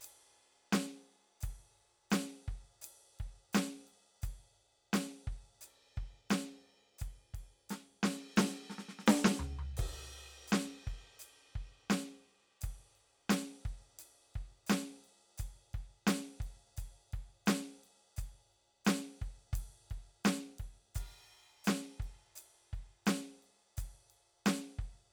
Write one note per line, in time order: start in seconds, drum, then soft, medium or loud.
0.01 hi-hat pedal medium
0.01 ride medium
0.73 snare loud
0.73 hi-hat pedal medium
0.73 ride medium
1.41 kick soft
1.41 hi-hat pedal medium
1.41 ride medium
1.78 ride soft
2.10 snare loud
2.10 hi-hat pedal medium
2.10 ride medium
2.48 kick soft
2.48 ride soft
2.81 hi-hat pedal medium
2.81 ride medium
3.19 kick soft
3.19 ride soft
3.53 snare loud
3.53 hi-hat pedal medium
3.53 ride medium
3.87 ride soft
4.22 kick soft
4.22 hi-hat pedal soft
4.22 ride soft
4.93 snare loud
4.93 hi-hat pedal medium
4.93 ride medium
5.27 kick soft
5.61 hi-hat pedal medium
5.61 ride soft
5.97 kick soft
5.97 ride soft
6.30 snare loud
6.30 hi-hat pedal medium
6.30 ride soft
6.98 kick soft
6.98 hi-hat pedal medium
6.98 ride soft
7.34 kick soft
7.34 ride soft
7.69 snare medium
7.69 hi-hat pedal medium
7.69 ride soft
8.03 snare loud
8.03 ride medium
8.36 snare loud
8.36 hi-hat pedal medium
8.36 ride medium
8.70 snare soft
8.78 snare soft
8.89 snare soft
8.99 snare soft
9.06 snare loud
9.06 hi-hat pedal medium
9.24 snare loud
9.39 floor tom medium
9.59 floor tom medium
9.77 kick medium
9.77 hi-hat pedal medium
9.77 crash medium
10.48 hi-hat pedal medium
10.52 snare loud
10.52 ride soft
10.87 kick soft
10.87 ride soft
11.19 hi-hat pedal medium
11.19 ride soft
11.54 kick soft
11.54 ride soft
11.90 snare loud
11.90 hi-hat pedal medium
11.90 ride soft
12.61 kick soft
12.61 hi-hat pedal medium
12.61 ride medium
12.95 ride soft
13.30 snare loud
13.30 hi-hat pedal medium
13.30 ride medium
13.65 kick soft
13.65 ride soft
13.99 hi-hat pedal medium
13.99 ride medium
14.34 kick soft
14.34 ride soft
14.67 snare loud
14.67 hi-hat pedal medium
14.67 ride medium
15.04 ride soft
15.38 kick soft
15.38 hi-hat pedal medium
15.38 ride soft
15.73 kick soft
15.73 ride soft
16.07 snare loud
16.07 hi-hat pedal medium
16.07 ride medium
16.40 kick soft
16.40 ride soft
16.77 kick soft
16.77 hi-hat pedal soft
16.77 ride soft
17.13 kick soft
17.13 ride soft
17.46 snare loud
17.46 hi-hat pedal medium
17.46 ride medium
17.84 ride soft
18.16 kick soft
18.16 hi-hat pedal medium
18.16 ride soft
18.52 ride soft
18.85 snare loud
18.85 hi-hat pedal medium
18.85 ride medium
19.22 kick soft
19.22 ride soft
19.53 kick medium
19.53 hi-hat pedal soft
19.53 ride medium
19.90 kick soft
19.90 ride soft
20.24 snare loud
20.24 hi-hat pedal medium
20.24 ride medium
20.59 kick soft
20.59 ride soft
20.95 kick soft
20.95 hi-hat pedal medium
20.95 crash soft
21.64 snare loud
21.64 hi-hat pedal medium
21.64 ride medium
22.00 kick soft
22.00 ride soft
22.35 hi-hat pedal medium
22.35 ride medium
22.73 kick soft
22.73 ride soft
23.06 snare loud
23.06 hi-hat pedal medium
23.06 ride medium
23.42 ride soft
23.77 kick soft
23.77 hi-hat pedal medium
23.77 ride medium
24.10 ride soft
24.46 snare loud
24.46 hi-hat pedal medium
24.46 ride medium
24.79 kick soft
24.79 ride soft